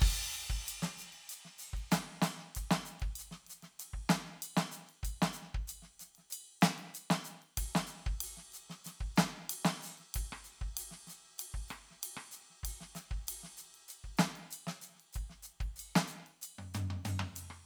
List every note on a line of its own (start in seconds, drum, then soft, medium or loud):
0.01 kick loud
0.01 hi-hat pedal medium
0.01 crash loud
0.32 hi-hat pedal medium
0.39 ride soft
0.50 kick medium
0.50 ride soft
0.67 hi-hat pedal medium
0.67 ride bell medium
0.83 snare loud
0.98 hi-hat pedal medium
0.98 ride soft
1.13 ride soft
1.30 hi-hat pedal medium
1.30 ride bell medium
1.45 snare soft
1.59 hi-hat pedal medium
1.59 ride soft
1.74 kick medium
1.74 ride soft
1.92 snare loud
1.92 hi-hat pedal loud
1.92 ride medium
2.22 snare medium
2.22 hi-hat pedal medium
2.22 ride bell soft
2.38 snare soft
2.56 kick medium
2.56 hi-hat pedal medium
2.56 ride medium
2.71 snare loud
2.86 hi-hat pedal medium
3.00 kick medium
3.00 ride soft
3.16 hi-hat pedal medium
3.16 ride bell medium
3.32 snare soft
3.47 snare soft
3.47 hi-hat pedal medium
3.47 ride soft
3.63 snare soft
3.63 ride soft
3.80 hi-hat pedal medium
3.80 ride medium
3.94 kick soft
4.09 snare loud
4.09 hi-hat pedal medium
4.26 snare soft
4.43 hi-hat pedal medium
4.43 ride bell medium
4.57 snare loud
4.72 hi-hat pedal medium
4.72 ride soft
4.86 snare soft
4.86 ride soft
5.03 kick medium
5.03 hi-hat pedal medium
5.03 ride bell medium
5.22 snare loud
5.33 hi-hat pedal medium
5.43 snare soft
5.55 kick medium
5.68 hi-hat pedal medium
5.68 ride bell medium
5.83 snare soft
6.00 snare soft
6.00 hi-hat pedal medium
6.00 ride soft
6.16 snare soft
6.16 ride soft
6.31 hi-hat pedal medium
6.31 ride bell medium
6.62 snare loud
6.62 hi-hat pedal medium
6.78 ride soft
6.95 hi-hat pedal medium
6.95 ride bell medium
7.11 snare loud
7.25 hi-hat pedal medium
7.25 ride soft
7.41 snare soft
7.41 ride soft
7.57 kick medium
7.57 hi-hat pedal medium
7.57 ride loud
7.76 snare medium
7.87 hi-hat pedal medium
8.07 kick medium
8.21 hi-hat pedal medium
8.21 ride loud
8.37 snare soft
8.53 hi-hat pedal medium
8.53 ride soft
8.70 snare soft
8.70 ride soft
8.85 snare soft
8.85 hi-hat pedal medium
8.85 ride medium
9.01 kick medium
9.16 snare loud
9.16 hi-hat pedal medium
9.35 snare soft
9.50 hi-hat pedal medium
9.50 ride loud
9.65 snare loud
9.82 hi-hat pedal medium
9.82 ride soft
9.98 snare soft
9.98 ride soft
10.15 kick medium
10.15 hi-hat pedal medium
10.15 ride loud
10.33 cross-stick medium
10.45 hi-hat pedal medium
10.62 kick medium
10.77 hi-hat pedal medium
10.77 ride loud
10.91 snare soft
11.07 snare soft
11.07 hi-hat pedal medium
11.07 ride soft
11.24 ride soft
11.39 hi-hat pedal medium
11.39 ride loud
11.54 kick medium
11.69 cross-stick medium
11.69 hi-hat pedal soft
11.69 ride soft
11.91 snare soft
12.03 hi-hat pedal medium
12.03 ride loud
12.17 cross-stick medium
12.32 hi-hat pedal medium
12.50 snare soft
12.64 kick soft
12.64 hi-hat pedal medium
12.64 ride loud
12.81 snare soft
12.96 snare soft
12.96 hi-hat pedal medium
12.96 ride soft
13.11 kick medium
13.27 hi-hat pedal medium
13.27 ride loud
13.44 snare soft
13.57 snare soft
13.57 hi-hat pedal medium
13.57 ride soft
13.75 ride soft
13.89 hi-hat pedal medium
13.89 ride bell soft
14.04 kick soft
14.17 snare loud
14.17 hi-hat pedal medium
14.36 snare soft
14.36 ride soft
14.51 hi-hat pedal medium
14.51 ride bell medium
14.67 snare medium
14.82 hi-hat pedal medium
14.82 ride soft
14.96 snare soft
15.00 ride soft
15.13 kick medium
15.13 hi-hat pedal soft
15.13 ride bell soft
15.30 snare soft
15.43 hi-hat pedal medium
15.43 ride soft
15.61 kick medium
15.61 ride soft
15.76 hi-hat pedal medium
15.76 ride bell medium
15.96 snare loud
16.08 hi-hat pedal medium
16.27 ride soft
16.42 hi-hat pedal medium
16.42 ride bell medium
16.59 open hi-hat soft
16.59 high tom medium
16.74 hi-hat pedal medium
16.74 high tom loud
16.91 high tom medium
17.05 hi-hat pedal medium
17.05 high tom loud
17.20 high tom loud
17.36 hi-hat pedal medium
17.36 ride medium
17.51 cross-stick medium